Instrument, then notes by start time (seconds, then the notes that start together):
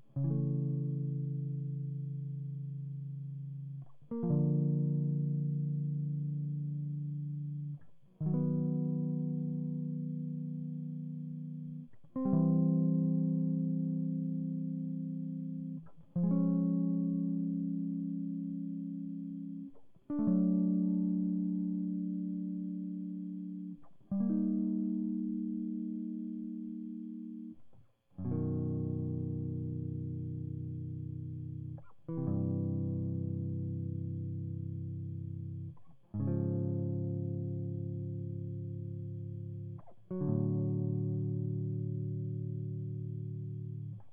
electric guitar
0.18 C#3
0.25 E3
0.31 A3
4.12 A#3
4.24 F3
4.31 D3
8.22 D#3
8.27 F#3
8.34 B3
12.16 C4
12.26 G3
12.34 E3
16.17 F3
16.24 G#3
16.31 C#4
20.10 D4
20.20 A3
20.28 F#3
24.12 G3
24.21 A#3
24.30 D#4
28.21 F#2
28.26 B2
28.32 D#3
32.09 E3
32.19 C3
32.29 G2
36.16 G#2
36.21 C#3
36.28 F3
40.12 F#3
40.22 D3
40.29 A2